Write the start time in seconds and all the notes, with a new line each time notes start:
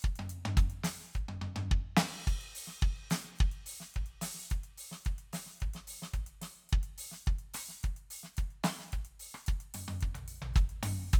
0.01 kick, closed hi-hat, hi-hat pedal
0.16 closed hi-hat, high tom
0.30 closed hi-hat
0.46 high tom
0.58 kick, closed hi-hat
0.70 closed hi-hat
0.84 open hi-hat, snare
1.01 snare
1.14 kick, hi-hat pedal
1.29 high tom
1.42 high tom
1.56 high tom
1.72 kick
1.97 snare, crash
2.28 kick, closed hi-hat
2.41 closed hi-hat
2.55 open hi-hat
2.68 snare
2.78 hi-hat pedal
2.82 kick, closed hi-hat
2.96 closed hi-hat
3.11 open hi-hat, snare
3.25 snare
3.36 closed hi-hat, hi-hat pedal
3.41 kick
3.52 snare, closed hi-hat
3.56 snare
3.67 open hi-hat
3.81 snare
3.90 hi-hat pedal
3.95 kick, closed hi-hat
4.06 closed hi-hat
4.22 open hi-hat, snare
4.35 snare
4.48 kick, closed hi-hat, hi-hat pedal
4.64 closed hi-hat
4.78 open hi-hat
4.92 snare
5.02 closed hi-hat, hi-hat pedal
5.07 kick
5.19 closed hi-hat
5.33 open hi-hat, snare
5.39 kick
5.47 snare
5.57 hi-hat pedal
5.61 kick, closed hi-hat
5.74 snare, closed hi-hat
5.88 open hi-hat
6.03 snare
6.08 hi-hat pedal
6.14 kick, closed hi-hat
6.27 closed hi-hat
6.42 snare, open hi-hat
6.70 kick, hi-hat pedal, open hi-hat
6.84 closed hi-hat
6.98 open hi-hat
7.12 snare
7.23 closed hi-hat, hi-hat pedal
7.28 kick
7.39 closed hi-hat
7.54 open hi-hat, cross-stick
7.69 snare
7.81 kick, closed hi-hat, hi-hat pedal
7.97 closed hi-hat
8.11 open hi-hat
8.24 snare
8.34 closed hi-hat, hi-hat pedal
8.39 kick
8.51 closed hi-hat
8.64 open hi-hat, snare
8.80 snare
8.89 closed hi-hat, hi-hat pedal
8.93 kick
8.99 snare
9.03 snare, closed hi-hat
9.20 open hi-hat
9.35 cross-stick
9.45 kick, closed hi-hat, hi-hat pedal
9.61 closed hi-hat
9.75 open hi-hat, high tom
9.89 high tom
9.99 kick, closed hi-hat, hi-hat pedal
10.15 closed hi-hat, floor tom
10.28 kick, open hi-hat
10.42 floor tom
10.54 kick, closed hi-hat, hi-hat pedal
10.70 closed hi-hat
10.83 open hi-hat, high tom
11.11 kick, closed hi-hat, hi-hat pedal